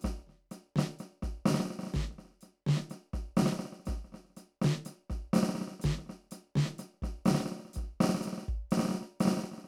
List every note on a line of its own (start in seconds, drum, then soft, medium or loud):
0.01 kick soft
0.01 snare soft
0.01 hi-hat pedal medium
0.04 snare medium
0.13 snare soft
0.18 snare soft
0.27 snare soft
0.29 snare soft
0.51 snare soft
0.51 hi-hat pedal medium
0.76 snare medium
0.79 snare medium
0.99 snare soft
0.99 hi-hat pedal medium
1.09 snare soft
1.13 snare soft
1.23 kick soft
1.23 snare soft
1.46 snare medium
1.46 hi-hat pedal soft
1.48 snare medium
1.50 snare medium
1.54 snare medium
1.60 snare medium
1.66 snare soft
1.71 snare soft
1.75 snare soft
1.79 snare soft
1.83 snare soft
1.87 snare soft
1.90 snare soft
1.90 hi-hat pedal medium
1.94 kick soft
1.94 snare medium
1.96 snare soft
2.01 kick soft
2.11 snare soft
2.18 snare soft
2.25 snare soft
2.31 snare soft
2.41 snare soft
2.41 hi-hat pedal medium
2.67 snare medium
2.69 snare medium
2.77 snare soft
2.90 snare soft
2.90 hi-hat pedal medium
3.13 kick soft
3.13 snare soft
3.37 snare medium
3.37 hi-hat pedal medium
3.39 snare medium
3.42 snare medium
3.46 snare medium
3.52 snare medium
3.59 snare soft
3.65 snare soft
3.73 snare soft
3.80 snare soft
3.85 snare soft
3.85 hi-hat pedal medium
3.87 kick soft
3.87 snare soft
3.92 snare soft
3.97 snare soft
4.05 snare soft
4.12 snare soft
4.14 snare soft
4.19 snare soft
4.25 snare soft
4.30 snare soft
4.37 snare soft
4.37 hi-hat pedal medium
4.62 snare medium
4.64 snare loud
4.85 snare soft
4.85 hi-hat pedal medium
4.92 snare soft
5.10 kick soft
5.10 snare soft
5.33 snare medium
5.33 hi-hat pedal medium
5.36 snare medium
5.38 snare medium
5.43 snare medium
5.49 snare medium
5.54 snare soft
5.58 snare soft
5.61 snare soft
5.68 snare soft
5.71 snare soft
5.73 snare soft
5.80 snare soft
5.80 hi-hat pedal medium
5.84 kick soft
5.84 snare medium
5.98 snare soft
6.06 snare soft
6.09 snare soft
6.24 snare soft
6.27 snare soft
6.31 snare soft
6.31 hi-hat pedal loud
6.56 snare medium
6.57 snare medium
6.66 snare soft
6.78 snare soft
6.78 hi-hat pedal medium
6.94 snare soft
7.02 kick soft
7.02 snare soft
7.25 snare medium
7.25 hi-hat pedal medium
7.28 snare medium
7.31 snare medium
7.35 snare medium
7.40 snare medium
7.46 snare soft
7.52 snare soft
7.57 snare soft
7.59 snare soft
7.65 snare soft
7.73 snare soft
7.73 hi-hat pedal medium
7.76 kick soft
7.76 snare soft
7.78 snare soft
7.83 snare soft
8.01 snare medium
8.04 snare medium
8.09 snare medium
8.15 snare medium
8.17 snare soft
8.21 snare soft
8.21 hi-hat pedal medium
8.26 snare soft
8.28 snare soft
8.33 snare soft
8.38 snare soft
8.48 kick soft
8.48 snare soft
8.54 kick soft
8.71 snare medium
8.71 hi-hat pedal medium
8.78 snare medium
8.79 snare medium
8.83 snare soft
8.85 snare medium
8.89 snare soft
8.91 snare soft
8.95 snare soft
9.02 snare soft
9.20 snare medium
9.20 hi-hat pedal medium
9.25 snare medium
9.28 snare medium
9.31 snare soft
9.33 snare soft
9.37 snare soft
9.39 snare soft
9.44 snare soft
9.52 snare soft
9.53 snare soft
9.58 snare soft
9.64 snare soft